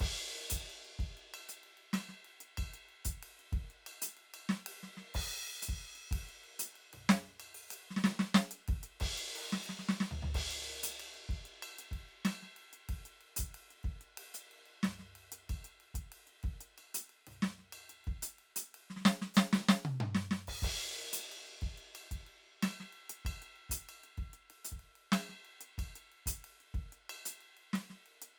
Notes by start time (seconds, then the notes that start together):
0.00 kick, ride
0.34 ride
0.50 closed hi-hat, kick
0.70 ride
0.85 closed hi-hat
0.99 kick, ride
1.17 closed hi-hat
1.34 ride bell
1.49 closed hi-hat
1.63 ride
1.77 ride
1.93 snare, ride bell
2.08 snare
2.24 ride
2.40 closed hi-hat
2.57 kick, ride bell
2.74 closed hi-hat
2.89 ride
3.05 closed hi-hat, kick
3.23 ride
3.39 closed hi-hat
3.52 kick, ride
3.70 closed hi-hat
3.86 ride bell
4.02 closed hi-hat
4.17 ride
4.34 ride bell
4.49 snare
4.66 ride
4.83 snare
4.97 snare
5.14 kick, crash
5.30 closed hi-hat
5.46 ride
5.62 closed hi-hat
5.68 kick
5.80 ride
5.95 closed hi-hat
6.11 kick, ride
6.28 closed hi-hat
6.44 ride
6.59 closed hi-hat
6.76 ride
6.93 cross-stick, high tom, ride, floor tom
7.09 snare
7.40 ride bell
7.54 open hi-hat
7.70 hi-hat pedal, ride
7.90 snare
7.96 snare
8.04 snare
8.19 snare
8.34 snare
8.51 closed hi-hat
8.68 kick, ride
8.83 closed hi-hat
9.00 kick, ride
9.17 closed hi-hat
9.35 crash
9.52 snare
9.62 hi-hat pedal
9.69 snare
9.79 snare
9.89 snare
10.00 snare
10.11 floor tom
10.22 floor tom
10.34 kick, ride
10.51 closed hi-hat
10.67 ride
10.83 closed hi-hat
10.99 ride bell
11.14 closed hi-hat
11.29 kick, ride
11.45 closed hi-hat
11.62 ride bell
11.78 closed hi-hat
11.91 kick, ride
12.08 ride bell
12.25 snare, ride bell
12.42 snare
12.56 ride
12.73 closed hi-hat
12.89 kick, cross-stick, ride
13.05 closed hi-hat
13.21 ride
13.36 closed hi-hat, kick
13.54 ride
13.70 closed hi-hat
13.83 kick, ride
14.01 closed hi-hat
14.17 ride
14.34 closed hi-hat
14.51 ride
14.66 ride
14.83 snare, ride, floor tom
14.99 snare
15.15 ride
15.32 closed hi-hat
15.49 kick, ride bell
15.64 closed hi-hat
15.80 ride
15.94 kick, closed hi-hat
16.12 ride
16.27 closed hi-hat
16.43 kick, ride
16.60 closed hi-hat
16.78 cross-stick, ride bell
16.94 closed hi-hat
17.09 ride
17.27 cross-stick, high tom, ride, floor tom
17.31 hi-hat pedal
17.42 snare
17.59 snare
17.72 ride bell
17.89 closed hi-hat
18.04 kick, ride
18.22 closed hi-hat
18.38 ride
18.56 closed hi-hat
18.74 ride
18.90 snare
18.96 snare
19.01 snare
19.05 snare
19.22 snare
19.34 snare, hi-hat pedal
19.53 snare
19.69 snare
19.85 high tom
20.00 mid tom
20.15 snare
20.31 snare
20.47 kick, crash
20.62 kick, ride
20.82 closed hi-hat
20.95 ride
21.13 closed hi-hat
21.31 ride bell
21.47 closed hi-hat
21.61 kick, ride
21.77 closed hi-hat
21.95 ride bell
22.11 kick, closed hi-hat
22.26 ride
22.62 snare, ride bell
22.80 snare
22.92 ride
23.09 closed hi-hat
23.25 kick, ride bell
23.42 closed hi-hat
23.56 ride
23.69 closed hi-hat, kick
23.89 ride bell
24.03 closed hi-hat
24.17 kick, ride
24.33 closed hi-hat
24.50 cross-stick, ride
24.65 closed hi-hat
24.72 kick
24.79 ride
24.95 ride
25.12 snare, ride bell
25.29 snare
25.45 ride
25.61 closed hi-hat
25.78 kick, ride bell
25.95 closed hi-hat
26.12 ride
26.26 closed hi-hat, kick
26.44 ride
26.60 closed hi-hat
26.74 kick, ride
26.92 closed hi-hat
27.09 ride bell
27.25 closed hi-hat
27.41 ride
27.57 ride
27.73 snare, ride
27.90 snare
28.06 ride
28.22 closed hi-hat